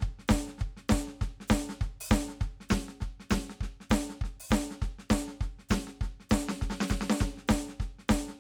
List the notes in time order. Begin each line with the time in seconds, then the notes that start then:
0.01 kick, snare
0.19 snare
0.28 kick, snare, hi-hat pedal
0.48 snare
0.59 kick, snare
0.77 snare
0.89 kick, snare, hi-hat pedal
1.08 snare
1.22 kick, snare
1.41 snare
1.48 kick, snare, hi-hat pedal
1.70 snare
1.81 kick, snare
2.01 open hi-hat
2.09 kick, snare, hi-hat pedal
2.29 snare
2.41 kick, snare
2.61 snare
2.70 kick, hi-hat pedal
2.89 snare
3.01 kick, snare
3.20 snare
3.30 kick, snare, hi-hat pedal
3.50 snare
3.61 kick, snare
3.81 snare
3.90 kick, snare, hi-hat pedal
4.10 snare
4.22 kick, snare
4.40 open hi-hat
4.50 kick, snare, hi-hat pedal
4.71 snare
4.82 kick, snare
4.99 snare
5.10 kick, snare, hi-hat pedal
5.28 snare
5.41 kick, snare
5.59 snare
5.69 kick, snare, hi-hat pedal
5.88 snare
6.02 kick, snare
6.20 snare
6.30 kick, snare, hi-hat pedal
6.49 snare
6.62 kick, snare
6.71 snare
6.81 snare
6.88 kick, snare, hi-hat pedal
7.01 snare
7.10 snare
7.21 kick, snare
7.38 snare
7.48 kick, snare, hi-hat pedal
7.69 snare
7.80 kick, snare
7.99 snare
8.09 kick, snare, hi-hat pedal
8.29 snare